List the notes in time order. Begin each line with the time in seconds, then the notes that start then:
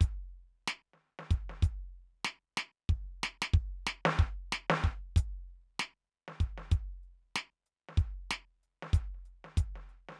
0.01 closed hi-hat, kick
0.68 closed hi-hat, snare
0.94 snare
1.19 snare
1.31 kick, closed hi-hat
1.50 snare
1.63 closed hi-hat, kick
2.25 snare
2.57 snare
2.89 kick
3.23 snare
3.42 snare
3.54 kick
3.87 snare
4.05 snare
4.19 kick
4.53 snare
4.70 snare
4.84 kick
5.16 closed hi-hat, kick
5.80 snare, closed hi-hat
6.28 snare
6.40 kick, closed hi-hat
6.58 snare
6.72 closed hi-hat, kick
7.03 closed hi-hat
7.36 closed hi-hat, snare
7.66 closed hi-hat
7.89 snare
7.98 closed hi-hat, kick
8.31 closed hi-hat, snare
8.63 closed hi-hat
8.83 snare
8.93 closed hi-hat, kick
9.15 snare
9.26 closed hi-hat
9.45 snare
9.57 closed hi-hat, kick
9.76 snare
9.89 closed hi-hat
10.09 snare
10.12 snare